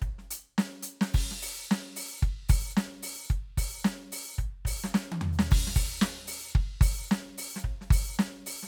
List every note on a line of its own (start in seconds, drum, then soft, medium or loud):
0.02 kick medium
0.02 closed hi-hat medium
0.19 snare soft
0.31 closed hi-hat loud
0.58 snare loud
0.83 closed hi-hat loud
1.01 snare loud
1.09 hi-hat pedal soft
1.14 kick loud
1.14 crash loud
1.31 snare medium
1.42 open hi-hat loud
1.66 hi-hat pedal soft
1.71 snare loud
1.96 open hi-hat loud
2.19 kick medium
2.19 hi-hat pedal soft
2.49 open hi-hat loud
2.49 kick loud
2.72 hi-hat pedal soft
2.77 snare loud
3.03 open hi-hat loud
3.27 kick medium
3.27 hi-hat pedal soft
3.58 open hi-hat loud
3.58 kick medium
3.82 snare loud
3.82 hi-hat pedal soft
4.12 open hi-hat loud
4.36 kick medium
4.36 hi-hat pedal soft
4.65 open hi-hat loud
4.65 kick medium
4.84 snare medium
4.84 hi-hat pedal soft
4.94 snare loud
5.04 hi-hat pedal soft
5.12 high tom loud
5.21 floor tom loud
5.33 hi-hat pedal medium
5.39 snare loud
5.51 kick loud
5.51 crash loud
5.67 snare medium
5.76 open hi-hat loud
5.76 kick loud
5.99 snare loud
5.99 hi-hat pedal medium
6.27 open hi-hat loud
6.52 kick loud
6.52 hi-hat pedal soft
6.59 snare soft
6.64 snare soft
6.67 snare soft
6.81 open hi-hat loud
6.81 kick loud
7.08 snare loud
7.08 hi-hat pedal medium
7.38 open hi-hat loud
7.56 snare medium
7.60 kick medium
7.60 hi-hat pedal medium
7.81 snare soft
7.91 open hi-hat loud
7.91 kick loud
8.16 snare loud
8.16 hi-hat pedal medium
8.46 open hi-hat loud
8.63 snare soft